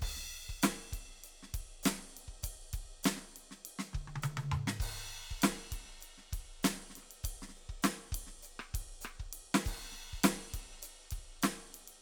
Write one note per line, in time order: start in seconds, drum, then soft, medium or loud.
0.01 kick medium
0.01 hi-hat pedal soft
0.01 crash medium
0.15 kick soft
0.15 snare soft
0.21 snare soft
0.24 snare soft
0.49 kick soft
0.62 snare loud
0.62 hi-hat pedal medium
0.62 ride loud
0.93 kick soft
0.93 ride medium
1.08 snare soft
1.24 hi-hat pedal soft
1.24 ride medium
1.43 snare soft
1.48 snare soft
1.54 kick soft
1.54 ride medium
1.61 kick soft
1.83 snare loud
1.83 hi-hat pedal medium
1.83 ride loud
2.17 ride medium
2.28 kick soft
2.28 snare soft
2.43 kick soft
2.43 hi-hat pedal medium
2.43 ride loud
2.73 kick soft
2.73 ride medium
2.85 kick soft
3.04 snare loud
3.04 hi-hat pedal medium
3.04 ride loud
3.17 snare soft
3.36 ride medium
3.51 snare soft
3.65 hi-hat pedal soft
3.65 ride medium
3.79 snare medium
3.94 kick soft
3.94 high tom medium
4.01 kick soft
4.08 high tom medium
4.16 high tom medium
4.23 hi-hat pedal medium
4.23 high tom loud
4.38 high tom loud
4.52 mid tom loud
4.68 snare medium
4.80 kick medium
4.80 hi-hat pedal medium
4.80 crash medium
4.91 kick soft
4.93 kick soft
5.31 kick soft
5.42 snare loud
5.42 hi-hat pedal medium
5.42 ride loud
5.72 kick soft
5.72 ride medium
5.78 kick soft
5.85 snare soft
6.01 hi-hat pedal soft
6.01 ride medium
6.18 snare soft
6.24 cross-stick soft
6.31 kick soft
6.31 snare soft
6.31 ride medium
6.40 kick soft
6.63 snare loud
6.63 hi-hat pedal medium
6.63 ride loud
6.90 snare soft
6.90 hi-hat pedal soft
6.96 snare soft
6.96 ride medium
7.03 cross-stick soft
7.11 ride medium
7.24 kick soft
7.24 hi-hat pedal medium
7.24 ride loud
7.30 kick soft
7.34 kick soft
7.42 snare soft
7.49 snare soft
7.57 ride soft
7.69 kick soft
7.83 snare loud
7.83 hi-hat pedal medium
7.83 ride loud
8.12 kick soft
8.12 ride loud
8.23 kick soft
8.23 snare soft
8.43 hi-hat pedal medium
8.43 ride soft
8.60 cross-stick medium
8.74 kick medium
8.74 ride medium
8.81 kick soft
9.01 cross-stick medium
9.01 hi-hat pedal medium
9.20 kick soft
9.26 kick soft
9.33 ride medium
9.55 snare loud
9.65 kick medium
9.65 hi-hat pedal medium
9.65 crash medium
9.73 kick soft
9.78 kick soft
9.92 snare soft
10.13 kick soft
10.24 snare loud
10.24 hi-hat pedal medium
10.24 ride loud
10.54 kick soft
10.54 ride medium
10.60 kick soft
10.69 snare soft
10.73 snare soft
10.83 hi-hat pedal medium
10.83 ride medium
11.11 kick soft
11.11 ride medium
11.19 kick soft
11.42 snare loud
11.42 hi-hat pedal medium
11.42 ride loud
11.70 snare soft
11.75 ride medium
11.80 snare soft
11.88 ride medium